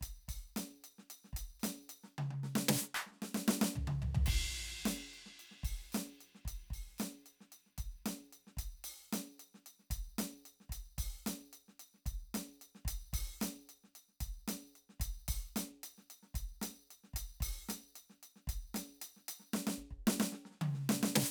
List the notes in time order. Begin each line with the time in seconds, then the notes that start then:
0.01 kick, closed hi-hat
0.28 kick, percussion
0.56 snare, closed hi-hat, hi-hat pedal
0.84 closed hi-hat
0.99 snare
1.10 closed hi-hat
1.24 snare
1.33 kick, closed hi-hat
1.60 snare, hi-hat pedal
1.64 closed hi-hat
1.89 closed hi-hat
2.04 snare
2.18 high tom
2.31 high tom
2.44 snare
2.56 snare
2.69 snare
2.81 snare
2.95 percussion
3.06 snare
3.12 snare
3.16 snare
3.22 snare
3.35 snare
3.48 snare
3.61 snare
3.76 floor tom
3.87 high tom
4.02 floor tom
4.15 floor tom
4.26 kick, ride
4.86 snare, closed hi-hat
5.13 closed hi-hat
5.26 snare
5.39 closed hi-hat
5.51 snare
5.64 kick, percussion
5.92 snare, closed hi-hat, hi-hat pedal
6.21 closed hi-hat
6.35 snare
6.45 kick, closed hi-hat
6.70 kick, percussion
6.98 snare, closed hi-hat, hi-hat pedal
7.26 closed hi-hat
7.41 snare
7.52 closed hi-hat
7.66 snare
7.78 kick, closed hi-hat
8.06 snare, closed hi-hat
8.33 closed hi-hat
8.47 snare
8.57 kick, closed hi-hat
8.84 percussion
9.13 snare, closed hi-hat, hi-hat pedal
9.40 closed hi-hat
9.54 snare
9.66 closed hi-hat
9.79 snare
9.91 kick, closed hi-hat
10.19 snare, closed hi-hat
10.46 closed hi-hat
10.60 snare
10.70 kick, closed hi-hat
10.98 kick, percussion
11.26 snare, closed hi-hat, hi-hat pedal
11.53 closed hi-hat
11.68 snare
11.80 closed hi-hat
11.94 snare
12.06 kick, closed hi-hat
12.34 snare, closed hi-hat
12.61 closed hi-hat
12.75 snare
12.85 kick, closed hi-hat
13.13 kick, percussion
13.41 snare, closed hi-hat, hi-hat pedal
13.69 closed hi-hat
13.84 snare
13.95 closed hi-hat
14.09 snare
14.21 kick, closed hi-hat
14.48 snare, closed hi-hat
14.76 closed hi-hat
14.89 snare
15.00 kick, closed hi-hat
15.28 kick, percussion
15.56 snare, hi-hat pedal, percussion
15.83 closed hi-hat
15.98 snare
16.10 closed hi-hat
16.23 snare
16.34 kick, closed hi-hat
16.62 snare, closed hi-hat
16.91 closed hi-hat
17.04 snare
17.14 kick, closed hi-hat
17.41 kick, percussion
17.69 snare, closed hi-hat, hi-hat pedal
17.96 closed hi-hat
18.10 snare
18.23 closed hi-hat
18.36 snare
18.47 kick, closed hi-hat
18.75 snare, closed hi-hat
19.02 closed hi-hat
19.17 snare
19.28 closed hi-hat
19.40 snare
19.54 snare
19.67 snare
19.78 kick
19.91 kick
20.07 snare
20.20 snare
20.32 snare
20.45 snare
20.50 snare
20.55 snare
20.60 snare, high tom
20.74 snare
20.78 snare
20.82 snare
20.86 snare
20.89 snare
21.03 snare
21.16 snare